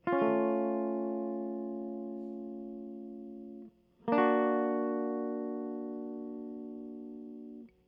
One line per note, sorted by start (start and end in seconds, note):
0.07 3.69 F4
0.12 3.66 C#4
0.22 3.72 A3
4.08 7.69 A#3
4.12 7.64 D4
4.18 7.65 F#4